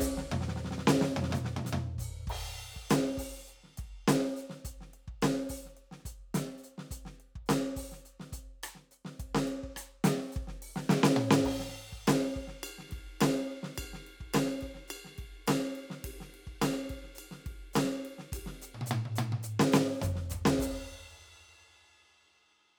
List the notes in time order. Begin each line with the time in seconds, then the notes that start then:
0.01 kick, hi-hat pedal
0.08 kick
0.18 snare
0.32 mid tom
0.41 snare
0.49 snare
0.57 snare
0.65 snare
0.71 snare
0.78 snare
0.88 snare
1.02 snare
1.17 mid tom
1.23 snare
1.30 snare, mid tom
1.35 hi-hat pedal
1.45 snare
1.57 mid tom
1.65 snare, hi-hat pedal
1.73 mid tom
1.99 kick, hi-hat pedal
2.04 kick
2.28 kick, crash
2.36 kick
2.76 kick
2.90 closed hi-hat, snare
3.18 open hi-hat, kick
3.24 kick
3.39 snare
3.47 open hi-hat, hi-hat pedal
3.64 snare
3.69 snare
3.73 snare
3.78 kick, closed hi-hat
3.85 kick
4.08 closed hi-hat, snare
4.18 snare
4.37 hi-hat pedal, open hi-hat
4.50 snare
4.65 closed hi-hat, kick
4.81 snare
4.89 snare
4.94 closed hi-hat
5.08 kick
5.22 closed hi-hat, snare
5.36 snare
5.50 open hi-hat, kick
5.66 snare
5.77 closed hi-hat
5.92 snare
5.99 snare
6.05 closed hi-hat, kick
6.35 closed hi-hat, snare
6.58 hi-hat pedal
6.64 closed hi-hat
6.78 snare
6.91 closed hi-hat, kick
6.97 kick
7.06 snare
7.20 closed hi-hat
7.36 kick
7.46 closed hi-hat, snare, hi-hat pedal
7.77 open hi-hat, kick
7.82 kick
7.92 snare
7.99 hi-hat pedal
8.05 closed hi-hat
8.20 snare
8.30 closed hi-hat, kick, snare
8.38 kick
8.63 closed hi-hat, cross-stick
8.75 snare
8.91 hi-hat pedal
9.05 snare
9.20 kick, closed hi-hat
9.26 kick
9.35 snare
9.48 closed hi-hat
9.64 kick
9.77 closed hi-hat, cross-stick
10.04 closed hi-hat, snare
10.32 open hi-hat, hi-hat pedal
10.36 kick
10.43 kick
10.48 kick, snare
10.58 kick
10.63 open hi-hat
10.76 snare
10.90 snare
11.03 snare, hi-hat pedal
11.17 high tom
11.31 snare
11.45 kick, crash
11.51 kick
11.54 kick
11.60 snare
11.68 snare, closed hi-hat
11.93 kick
12.08 snare, hi-hat pedal, ride bell
12.19 snare
12.36 kick, ride
12.42 kick
12.48 snare
12.64 hi-hat pedal, ride bell
12.79 snare
12.89 kick, snare, ride
12.98 kick
13.21 snare, hi-hat pedal, ride bell
13.51 ride
13.63 snare
13.75 kick, hi-hat pedal, ride bell
13.94 snare
14.07 ride
14.21 kick
14.34 snare, hi-hat pedal, ride bell
14.46 snare
14.61 kick, ride
14.75 snare
14.88 hi-hat pedal, ride bell
15.05 snare
15.15 kick, snare, ride
15.24 kick
15.47 snare, hi-hat pedal, ride bell
15.58 snare
15.76 ride
15.90 snare
16.04 kick, hi-hat pedal, ride
16.10 kick
16.21 snare
16.34 ride
16.47 kick
16.62 snare, hi-hat pedal, ride bell
16.72 snare
16.90 kick, ride
16.96 kick
17.04 snare
17.15 hi-hat pedal, ride bell
17.31 snare
17.40 snare
17.46 kick, ride
17.52 kick
17.55 kick
17.74 snare, hi-hat pedal, ride bell
17.85 snare
18.05 ride
18.19 snare
18.33 kick, hi-hat pedal, ride
18.39 kick
18.42 kick
18.46 snare
18.50 kick
18.62 hi-hat pedal
18.75 high tom
18.82 high tom
18.87 hi-hat pedal
18.91 high tom
19.06 high tom
19.16 hi-hat pedal, high tom
19.33 high tom
19.43 hi-hat pedal
19.60 snare
19.73 snare, hi-hat pedal
19.89 snare
20.02 kick, hi-hat pedal, mid tom
20.08 kick
20.16 snare
20.30 kick, hi-hat pedal, floor tom
20.37 kick
20.46 snare
20.59 kick, hi-hat pedal, crash
20.67 kick